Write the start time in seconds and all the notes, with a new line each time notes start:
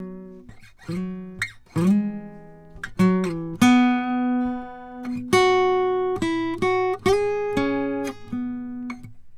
0.01 F#3
0.89 F#3
1.77 G#3
3.00 F#3
3.25 E3
3.62 B3
5.33 F#4
6.22 E4
6.63 F#4
7.06 G#4
7.57 C#4
8.34 B3